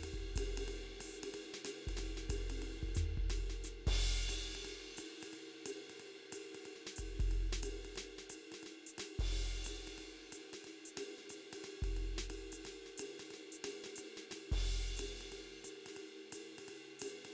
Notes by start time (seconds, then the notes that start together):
0.03 ride
0.13 kick
0.36 kick, hi-hat pedal, ride
0.57 ride
0.68 ride
1.00 hi-hat pedal, ride
1.23 ride
1.34 ride
1.54 snare
1.65 snare, hi-hat pedal, ride
1.87 kick, ride
1.97 snare, ride
2.17 snare
2.29 kick, hi-hat pedal, ride
2.50 high tom, ride
2.62 high tom, ride
2.83 kick
2.95 snare, floor tom, hi-hat pedal
3.17 kick
3.30 snare, ride
3.49 snare
3.64 snare, hi-hat pedal
3.87 kick, ride
4.19 snare
4.29 hi-hat pedal, ride
4.55 ride
4.65 ride
4.90 snare
4.94 snare
4.96 snare, hi-hat pedal, ride
5.20 hi-hat pedal, ride
5.33 ride
5.66 hi-hat pedal, ride
5.89 ride
5.99 ride
6.23 snare
6.32 hi-hat pedal, ride
6.53 hi-hat pedal, ride
6.65 ride
6.76 snare
6.87 snare
6.96 kick, hi-hat pedal, ride
7.20 kick, ride
7.31 ride
7.52 snare
7.62 hi-hat pedal, ride
7.85 ride
7.96 snare, ride
8.18 snare
8.29 hi-hat pedal, ride
8.52 snare, ride
8.63 snare, ride
8.86 hi-hat pedal
8.98 snare, ride
9.19 kick, ride
9.30 ride
9.56 snare
9.64 hi-hat pedal, ride
9.87 ride
9.98 ride
10.20 snare
10.24 snare
10.29 snare, hi-hat pedal, ride
10.53 snare, ride
10.64 snare, ride
10.85 hi-hat pedal
10.97 snare, ride
11.18 snare
11.29 hi-hat pedal, ride
11.52 snare, ride
11.64 snare, ride
11.82 kick, ride
11.96 ride
12.18 snare
12.30 ride
12.52 hi-hat pedal, ride
12.65 snare, ride
12.86 snare
12.97 hi-hat pedal, ride
13.19 snare, ride
13.30 snare, ride
13.52 hi-hat pedal
13.64 snare, ride
13.84 snare, ride
13.96 hi-hat pedal, ride
14.17 snare
14.31 snare, ride
14.52 kick, ride
14.65 ride
14.88 snare
14.97 hi-hat pedal, ride
15.18 hi-hat pedal, ride
15.32 ride
15.51 snare
15.60 snare, ride
15.64 hi-hat pedal
15.86 snare, ride
15.96 ride
16.32 hi-hat pedal, ride
16.58 ride
16.68 ride
16.99 hi-hat pedal, ride
17.25 ride